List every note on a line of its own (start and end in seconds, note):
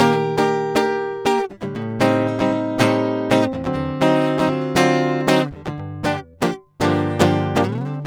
0.00 0.17 A#2
0.00 0.40 D#3
0.00 0.15 A#3
0.00 0.12 C#4
0.00 0.39 G4
0.00 0.38 A#4
0.15 0.30 A3
0.39 0.75 D#3
0.39 0.76 A3
0.39 0.56 D4
0.39 0.77 G4
0.39 0.77 A#4
0.75 1.21 D#3
0.75 0.99 A3
0.75 0.88 D4
0.75 1.26 G4
0.75 1.26 A#4
1.26 1.44 A#3
1.26 1.50 G4
1.26 1.50 A#4
1.64 1.74 A2
1.64 1.76 D3
1.64 1.77 G3
1.76 2.00 A2
1.76 1.96 C#3
1.76 2.01 G3
2.01 2.79 A2
2.01 2.15 C#3
2.01 2.28 G3
2.01 2.28 C4
2.01 2.29 D#4
2.28 2.43 G3
2.28 2.42 C4
2.28 2.42 D#4
2.42 2.53 D3
2.42 2.58 G3
2.42 2.53 C4
2.42 2.81 D#4
2.54 2.79 C4
2.80 3.29 A2
2.80 2.91 D3
2.80 3.32 G3
2.80 3.32 C4
2.80 3.33 D#4
3.31 3.50 A2
3.31 3.47 C#3
3.31 3.48 G3
3.31 3.54 C4
3.31 3.51 D#4
3.54 3.66 A2
3.54 3.67 C4
3.67 4.02 D3
3.67 3.83 F#3
3.67 3.75 C4
3.75 4.02 C4
4.02 4.42 D3
4.02 4.41 F#3
4.02 4.42 C4
4.02 4.39 D#4
4.41 4.50 D3
4.41 4.51 F#3
4.41 4.78 C4
4.41 4.51 D#4
4.50 4.77 D3
4.50 4.76 F#3
4.50 4.78 F4
4.77 5.28 D3
4.77 5.29 F#3
4.77 5.29 C4
4.77 5.25 F4
5.28 5.53 D3
5.28 5.48 F#3
5.28 5.52 C4
5.28 5.49 D#4
5.69 5.77 G#2
5.69 6.05 D3
5.69 5.79 F3
5.79 6.04 G2
6.05 6.21 G2
6.05 6.27 D3
6.05 6.23 F3
6.05 6.26 D4
6.05 6.25 G4
6.43 6.57 D3
6.43 6.58 F3
6.43 6.60 A#3
6.43 6.60 D4
6.43 6.60 G4
6.82 7.21 G2
6.82 7.22 D3
6.82 7.21 F3
6.82 7.20 A#3
6.82 7.21 D4
6.82 7.20 G4
7.20 7.79 G2
7.20 7.62 D3
7.20 7.56 F3
7.20 7.58 A#3
7.20 7.58 D4
7.20 7.56 G4
7.57 7.71 F#3
7.57 7.68 A#3
7.57 7.69 D4
7.57 7.70 G4
7.79 8.06 D3
7.79 7.92 G3
7.79 8.04 C4